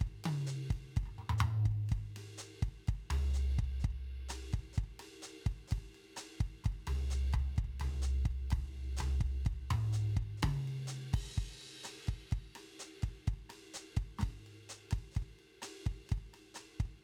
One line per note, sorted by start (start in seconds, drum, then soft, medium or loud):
0.01 kick soft
0.01 ride soft
0.07 kick soft
0.25 high tom medium
0.25 ride medium
0.47 hi-hat pedal medium
0.47 ride soft
0.71 kick soft
0.71 ride medium
0.76 kick soft
0.97 kick soft
0.97 ride soft
1.03 kick soft
1.03 mid tom soft
1.19 mid tom medium
1.30 mid tom medium
1.39 hi-hat pedal medium
1.39 mid tom loud
1.66 kick soft
1.66 ride soft
1.71 kick soft
1.86 hi-hat pedal soft
1.86 ride medium
1.92 kick soft
1.98 kick soft
2.16 snare soft
2.16 ride medium
2.38 hi-hat pedal medium
2.38 ride soft
2.63 kick soft
2.63 ride soft
2.68 kick soft
2.88 kick soft
2.88 ride soft
2.95 kick soft
3.11 floor tom loud
3.11 ride loud
3.34 hi-hat pedal medium
3.50 snare soft
3.59 kick soft
3.64 kick soft
3.80 hi-hat pedal soft
3.85 kick soft
3.91 kick soft
4.29 cross-stick soft
4.29 snare soft
4.29 hi-hat pedal medium
4.29 ride medium
4.53 kick soft
4.53 ride soft
4.59 kick soft
4.74 hi-hat pedal soft
4.74 ride soft
4.78 kick soft
4.84 kick soft
5.00 cross-stick soft
5.00 ride medium
5.23 hi-hat pedal medium
5.23 ride soft
5.47 kick soft
5.47 ride soft
5.52 kick soft
5.68 snare soft
5.68 hi-hat pedal medium
5.68 ride medium
5.72 kick soft
5.78 kick soft
5.95 ride soft
6.17 cross-stick soft
6.17 hi-hat pedal medium
6.17 ride medium
6.41 kick soft
6.41 ride soft
6.46 kick soft
6.64 kick soft
6.64 floor tom medium
6.64 ride medium
6.72 kick soft
6.88 floor tom loud
6.88 ride medium
7.11 hi-hat pedal medium
7.11 ride soft
7.33 kick soft
7.33 floor tom medium
7.33 ride soft
7.40 kick soft
7.57 kick soft
7.57 ride soft
7.65 kick soft
7.80 floor tom loud
7.80 ride medium
8.02 hi-hat pedal medium
8.02 ride soft
8.26 kick soft
8.26 ride soft
8.31 kick soft
8.51 kick soft
8.51 floor tom medium
8.51 ride medium
8.59 kick soft
8.97 floor tom loud
8.97 hi-hat pedal medium
8.97 ride medium
9.21 kick soft
9.21 ride soft
9.26 kick soft
9.46 kick soft
9.46 ride soft
9.53 kick soft
9.71 mid tom loud
9.71 ride medium
9.93 hi-hat pedal medium
10.17 kick soft
10.17 mid tom soft
10.17 ride soft
10.23 kick soft
10.38 hi-hat pedal soft
10.43 kick soft
10.43 high tom loud
10.43 ride loud
10.51 kick soft
10.68 ride soft
10.88 hi-hat pedal medium
10.88 ride medium
11.14 kick soft
11.14 ride loud
11.14 crash medium
11.38 kick soft
11.38 ride soft
11.62 ride soft
11.84 cross-stick soft
11.84 hi-hat pedal medium
11.84 ride medium
12.08 kick soft
12.08 ride soft
12.14 kick soft
12.29 hi-hat pedal soft
12.29 ride soft
12.33 kick soft
12.38 kick soft
12.56 cross-stick soft
12.56 ride medium
12.80 hi-hat pedal medium
12.80 ride soft
13.03 kick soft
13.03 ride soft
13.09 kick soft
13.28 kick soft
13.28 ride soft
13.34 kick soft
13.50 cross-stick soft
13.50 ride medium
13.74 hi-hat pedal loud
13.74 ride soft
13.97 kick soft
13.97 ride soft
14.03 kick soft
14.18 snare soft
14.18 hi-hat pedal soft
14.18 mid tom soft
14.18 ride medium
14.23 kick soft
14.29 kick soft
14.47 ride soft
14.70 hi-hat pedal medium
14.70 ride soft
14.92 kick soft
14.92 cross-stick soft
14.92 ride medium
14.98 kick soft
15.12 hi-hat pedal soft
15.12 ride soft
15.17 kick soft
15.22 kick soft
15.39 ride soft
15.62 cross-stick soft
15.62 hi-hat pedal medium
15.62 ride medium
15.86 kick soft
15.86 ride soft
15.92 kick soft
16.06 hi-hat pedal soft
16.06 ride soft
16.12 kick soft
16.18 kick soft
16.34 cross-stick soft
16.34 ride soft
16.55 cross-stick soft
16.55 hi-hat pedal medium
16.55 ride medium
16.80 kick soft
16.80 ride soft
16.86 kick soft